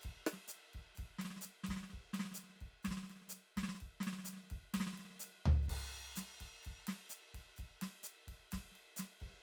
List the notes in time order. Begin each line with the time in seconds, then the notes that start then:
0.01 kick, hi-hat pedal, ride
0.10 kick
0.27 cross-stick, ride
0.33 snare
0.48 hi-hat pedal, ride
0.55 snare
0.74 kick, ride
0.80 kick
0.95 kick, snare, hi-hat pedal, ride
1.04 kick
1.19 snare, ride
1.25 snare
1.30 snare
1.36 snare
1.41 snare, hi-hat pedal, ride
1.64 snare, ride
1.68 kick, snare
1.74 kick, snare
1.83 snare
1.90 kick, snare, ride
1.98 kick
2.13 snare, ride
2.19 snare
2.25 snare
2.31 snare, hi-hat pedal
2.37 snare, ride
2.44 snare
2.49 snare
2.56 snare
2.61 kick, snare, ride
2.66 kick
2.83 snare, hi-hat pedal, ride
2.87 kick, snare
2.92 kick
2.97 snare
3.03 snare
3.10 snare, ride
3.16 snare
3.22 snare
3.28 snare, hi-hat pedal
3.32 snare, ride
3.36 snare
3.57 kick, snare, ride
3.62 kick, snare
3.69 snare
3.75 snare, hi-hat pedal
3.81 kick, ride
3.87 kick
4.00 snare, ride
4.07 snare
4.13 snare
4.18 snare
4.24 snare, hi-hat pedal, ride
4.29 snare
4.33 snare
4.37 snare
4.44 snare
4.47 snare, ride
4.51 kick, snare
4.57 kick
4.74 kick, snare, ride
4.80 snare
4.87 snare
4.93 snare
4.98 snare, ride
5.05 snare
5.10 snare
5.16 snare, hi-hat pedal
5.20 snare
5.24 snare, ride
5.28 snare
5.31 snare
5.35 snare
5.38 snare
5.46 kick, floor tom
5.52 kick
5.63 hi-hat pedal
5.68 kick, crash
5.74 kick
6.16 snare, hi-hat pedal, ride
6.40 kick, snare, ride
6.46 kick
6.62 hi-hat pedal, ride
6.66 kick
6.87 snare, ride
7.10 hi-hat pedal, ride
7.34 kick, ride
7.39 kick
7.56 kick, hi-hat pedal, ride
7.64 kick
7.81 snare, ride
8.03 hi-hat pedal, ride
8.28 kick, ride
8.33 kick
8.51 kick, snare, hi-hat pedal, ride
8.58 kick
8.71 snare
8.75 ride
8.96 snare, hi-hat pedal, ride
9.20 kick, ride
9.27 kick, snare